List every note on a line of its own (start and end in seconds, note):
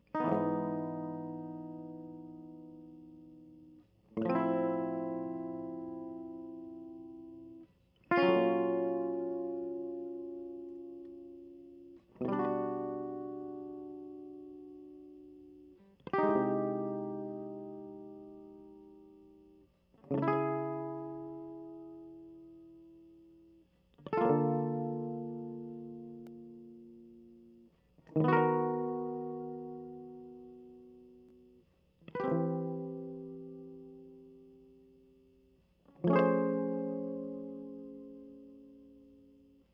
0.11 0.25 G#2
0.15 3.85 D#4
0.21 3.84 B3
0.25 3.78 E3
0.34 2.43 G#2
4.19 7.57 A2
4.26 7.64 F3
4.26 7.67 C4
4.36 7.68 E4
8.12 12.01 F4
8.18 12.01 C#4
8.24 11.76 F#3
8.38 10.35 A#2
12.23 14.77 B2
12.29 14.75 G3
12.29 15.77 D4
12.40 15.80 F#4
16.14 19.67 G4
16.19 19.67 D#4
16.24 19.38 G#3
16.37 18.66 C3
20.12 22.72 C#3
20.19 20.25 A3
20.23 23.68 E4
20.28 22.81 G#4
24.13 26.46 A4
24.18 27.71 A#3
24.18 27.71 F4
24.31 27.04 D3
28.17 30.66 D#3
28.25 31.63 B3
28.25 31.65 F#4
28.33 30.76 A#4
32.16 33.98 B4
32.20 35.61 G4
32.25 35.59 C4
32.33 34.67 E3
35.89 36.08 C#4
36.06 38.34 F3
36.11 39.66 C#4
36.11 39.64 G#4
36.16 39.18 C5